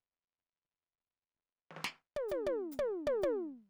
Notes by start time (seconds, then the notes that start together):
1.71 snare
1.77 snare
1.85 snare
2.16 high tom
2.29 hi-hat pedal, high tom
2.47 high tom
2.72 hi-hat pedal
2.79 high tom
3.07 high tom
3.22 hi-hat pedal, high tom